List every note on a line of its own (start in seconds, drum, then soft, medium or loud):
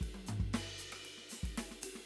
0.01 kick soft
0.01 ride medium
0.14 high tom medium
0.27 floor tom medium
0.27 hi-hat pedal medium
0.40 kick medium
0.53 snare medium
0.53 crash medium
0.78 hi-hat pedal medium
0.78 ride soft
0.92 cross-stick medium
0.92 ride medium
1.05 ride medium
1.18 snare soft
1.29 snare soft
1.29 hi-hat pedal medium
1.29 ride medium
1.43 kick soft
1.43 ride medium
1.58 snare medium
1.58 ride medium
1.71 snare soft
1.82 hi-hat pedal medium
1.82 ride loud
1.95 snare soft